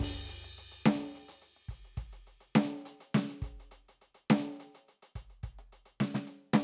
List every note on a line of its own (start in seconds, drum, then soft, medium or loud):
0.01 kick soft
0.01 crash loud
0.07 kick soft
0.30 closed hi-hat medium
0.45 closed hi-hat soft
0.59 closed hi-hat medium
0.72 closed hi-hat medium
0.86 snare loud
1.01 closed hi-hat medium
1.16 closed hi-hat medium
1.29 closed hi-hat medium
1.42 closed hi-hat medium
1.57 closed hi-hat soft
1.69 closed hi-hat medium
1.69 kick soft
1.85 closed hi-hat soft
1.98 closed hi-hat medium
1.98 kick soft
2.06 kick soft
2.13 closed hi-hat medium
2.27 closed hi-hat medium
2.41 closed hi-hat medium
2.56 snare loud
2.86 closed hi-hat loud
3.01 closed hi-hat medium
3.15 snare loud
3.30 closed hi-hat medium
3.42 closed hi-hat medium
3.42 kick soft
3.48 kick soft
3.61 closed hi-hat soft
3.72 closed hi-hat medium
3.89 closed hi-hat medium
4.02 closed hi-hat medium
4.15 closed hi-hat medium
4.31 snare loud
4.61 closed hi-hat medium
4.75 closed hi-hat medium
4.89 closed hi-hat medium
5.03 closed hi-hat medium
5.16 closed hi-hat medium
5.16 kick soft
5.30 closed hi-hat soft
5.44 closed hi-hat medium
5.44 kick soft
5.59 closed hi-hat medium
5.73 closed hi-hat medium
5.86 closed hi-hat medium
6.01 snare loud
6.15 snare medium
6.20 hi-hat pedal soft
6.28 closed hi-hat medium
6.54 snare loud